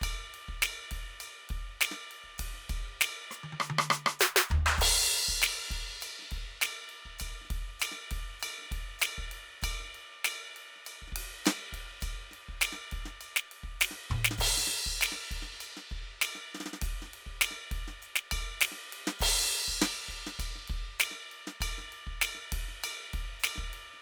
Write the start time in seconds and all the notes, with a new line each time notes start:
0.01 kick, hi-hat pedal, ride bell
0.12 kick
0.34 ride
0.48 kick
0.61 snare, hi-hat pedal, ride bell
0.91 kick, ride
1.20 hi-hat pedal, ride bell
1.49 kick, ride
1.57 kick
1.80 snare, hi-hat pedal, ride bell
1.91 snare
2.11 ride
2.23 kick
2.38 kick, hi-hat pedal, ride
2.45 kick
2.47 kick
2.53 snare
2.57 snare
2.69 kick, ride bell
2.77 kick
3.00 snare, hi-hat pedal, ride bell
3.31 cross-stick, hi-hat pedal
3.43 high tom
3.52 high tom
3.60 cross-stick
3.64 hi-hat pedal
3.69 high tom
3.78 cross-stick
3.90 cross-stick, hi-hat pedal
4.06 cross-stick
4.19 snare, hi-hat pedal
4.36 snare
4.48 kick, floor tom, hi-hat pedal
4.66 percussion
4.74 kick, percussion, hi-hat pedal
4.81 crash
4.90 kick
4.92 kick
5.28 kick
5.41 snare, hi-hat pedal, ride bell
5.68 kick, snare, ride
5.77 kick
6.00 hi-hat pedal, ride bell
6.19 snare
6.22 snare
6.31 kick, snare, ride
6.37 kick
6.61 snare, hi-hat pedal, ride bell
6.89 ride
7.05 kick
7.18 kick, hi-hat pedal, ride bell
7.28 kick
7.31 kick
7.41 snare
7.45 snare
7.50 kick, ride
7.57 kick
7.79 snare, hi-hat pedal, ride bell
7.91 snare
8.11 kick, ride
8.18 kick
8.21 kick
8.39 hi-hat pedal, ride bell
8.58 snare
8.62 snare
8.65 snare
8.71 kick, snare, ride
8.78 kick
8.99 snare, hi-hat pedal, ride bell
9.18 kick
9.31 ride
9.61 kick, hi-hat pedal, ride bell
9.69 kick
9.80 snare
9.84 snare
9.94 ride
10.24 snare, hi-hat pedal, ride bell
10.56 ride
10.76 snare
10.85 hi-hat pedal, ride bell
11.02 kick
11.07 snare
11.12 kick, ride
11.44 snare, hi-hat pedal, ride bell
11.72 kick, snare, ride
12.00 kick, hi-hat pedal, ride bell
12.08 kick
12.31 snare, ride
12.48 kick
12.60 snare, hi-hat pedal, ride bell
12.72 snare
12.91 kick, ride
12.98 kick
13.05 snare
13.21 hi-hat pedal, ride bell
13.36 snare
13.51 ride
13.63 kick
13.80 snare, hi-hat pedal, ride
13.91 snare
14.10 kick, mid tom
14.24 snare
14.30 snare
14.37 kick, hi-hat pedal, crash
14.46 kick
14.57 snare
14.67 snare
14.86 kick
15.01 snare, hi-hat pedal, ride bell
15.12 snare
15.30 kick, ride
15.36 kick
15.42 snare
15.52 snare
15.60 hi-hat pedal, ride bell
15.76 snare
15.89 kick, ride
16.21 snare, hi-hat pedal, ride bell
16.35 snare
16.54 snare
16.60 snare
16.66 snare
16.73 snare
16.81 kick, snare, hi-hat pedal, ride
16.93 kick
17.02 snare
17.05 snare
17.13 ride
17.26 kick
17.41 snare, hi-hat pedal, ride bell
17.50 snare
17.71 kick, ride
17.78 kick
17.87 snare
18.02 hi-hat pedal, ride
18.15 snare
18.31 kick, ride bell
18.39 kick
18.42 kick
18.61 snare, hi-hat pedal, ride
18.71 snare
18.92 ride
19.07 snare
19.19 kick, hi-hat pedal, crash
19.33 kick
19.41 snare
19.45 snare
19.49 snare
19.68 kick
19.81 snare, hi-hat pedal, ride bell
20.08 kick, ride
20.26 snare
20.39 kick, hi-hat pedal, ride bell
20.55 snare
20.62 snare
20.67 kick, ride
20.77 kick
20.99 snare, hi-hat pedal, ride bell
21.11 snare
21.31 ride
21.47 snare
21.60 kick, hi-hat pedal, ride bell
21.67 kick
21.78 snare
21.83 snare
21.87 snare
21.92 ride
22.07 kick
22.21 snare, hi-hat pedal, ride bell
22.34 snare
22.52 kick, ride
22.59 kick
22.68 snare
22.83 hi-hat pedal, ride bell
23.13 kick, ride
23.20 kick
23.23 kick
23.39 snare, hi-hat pedal, ride bell
23.55 kick, snare
23.63 kick
23.73 ride
23.93 snare